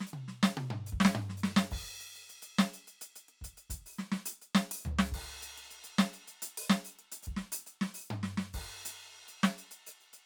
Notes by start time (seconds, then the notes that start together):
0.01 snare
0.07 hi-hat pedal
0.14 high tom
0.28 snare
0.43 snare
0.57 high tom
0.71 mid tom
0.87 hi-hat pedal
0.93 kick
0.99 kick, snare
1.03 kick, snare
1.15 mid tom
1.30 snare
1.38 hi-hat pedal
1.44 snare
1.57 snare
1.64 cross-stick, hi-hat pedal
1.72 kick, crash
1.78 kick
2.01 closed hi-hat
2.15 closed hi-hat
2.30 closed hi-hat
2.43 closed hi-hat
2.59 snare
2.74 closed hi-hat
2.88 closed hi-hat
3.02 open hi-hat
3.16 closed hi-hat
3.29 closed hi-hat
3.42 closed hi-hat, kick
3.57 closed hi-hat
3.70 closed hi-hat, kick
3.78 kick
3.86 open hi-hat
3.95 open hi-hat
3.99 snare
4.12 snare
4.26 closed hi-hat
4.42 closed hi-hat
4.55 snare
4.72 open hi-hat
4.83 floor tom, hi-hat pedal
4.99 snare
5.06 hi-hat pedal
5.12 kick, crash
5.18 kick
5.21 kick
5.43 closed hi-hat
5.58 closed hi-hat
5.66 closed hi-hat
5.71 closed hi-hat
5.84 closed hi-hat
5.99 snare
6.14 closed hi-hat
6.28 closed hi-hat
6.42 closed hi-hat
6.58 open hi-hat
6.66 hi-hat pedal
6.70 snare
6.85 open hi-hat
6.99 closed hi-hat
7.12 closed hi-hat
7.23 hi-hat pedal
7.27 kick
7.33 kick, snare
7.52 open hi-hat
7.67 open hi-hat
7.82 snare
7.94 open hi-hat
8.11 mid tom
8.23 snare
8.38 snare
8.54 kick, hi-hat pedal, crash
8.60 kick
8.86 closed hi-hat
9.15 closed hi-hat
9.28 closed hi-hat
9.44 snare
9.58 closed hi-hat
9.71 closed hi-hat
9.87 open hi-hat, hi-hat pedal
10.01 open hi-hat
10.13 closed hi-hat